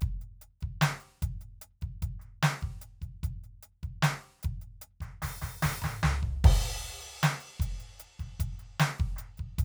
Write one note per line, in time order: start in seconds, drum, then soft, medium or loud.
0.01 closed hi-hat medium
0.01 kick medium
0.21 closed hi-hat soft
0.42 closed hi-hat medium
0.61 kick medium
0.61 closed hi-hat soft
0.82 closed hi-hat loud
0.82 snare loud
1.01 closed hi-hat soft
1.22 closed hi-hat loud
1.22 kick medium
1.41 closed hi-hat soft
1.62 closed hi-hat loud
1.82 kick soft
1.82 closed hi-hat soft
2.02 closed hi-hat medium
2.02 kick medium
2.20 snare soft
2.20 closed hi-hat soft
2.43 closed hi-hat loud
2.43 snare loud
2.61 kick medium
2.61 closed hi-hat soft
2.82 closed hi-hat medium
3.02 kick soft
3.02 closed hi-hat soft
3.23 closed hi-hat medium
3.23 kick medium
3.44 closed hi-hat soft
3.63 closed hi-hat medium
3.83 kick soft
3.83 closed hi-hat soft
4.03 closed hi-hat loud
4.03 snare loud
4.23 closed hi-hat soft
4.39 closed hi-hat loud
4.39 snare soft
4.45 kick medium
4.62 closed hi-hat soft
4.82 closed hi-hat loud
5.01 closed hi-hat medium
5.01 kick soft
5.01 snare soft
5.22 open hi-hat loud
5.22 kick soft
5.22 snare medium
5.42 kick soft
5.42 snare soft
5.42 open hi-hat medium
5.62 open hi-hat loud
5.62 kick soft
5.62 snare loud
5.82 kick soft
5.82 snare medium
5.82 mid tom medium
6.03 snare loud
6.03 floor tom loud
6.23 kick medium
6.44 kick loud
6.44 crash loud
6.84 closed hi-hat soft
7.01 closed hi-hat soft
7.23 closed hi-hat loud
7.23 snare loud
7.41 closed hi-hat soft
7.60 closed hi-hat loud
7.60 kick medium
7.80 closed hi-hat medium
8.00 closed hi-hat loud
8.20 kick soft
8.20 snare soft
8.20 closed hi-hat soft
8.40 closed hi-hat loud
8.40 kick medium
8.59 snare soft
8.59 closed hi-hat soft
8.80 closed hi-hat loud
8.80 snare loud
8.99 kick medium
8.99 closed hi-hat soft
9.17 closed hi-hat loud
9.17 snare soft
9.38 kick soft
9.38 closed hi-hat soft
9.59 closed hi-hat loud
9.59 kick medium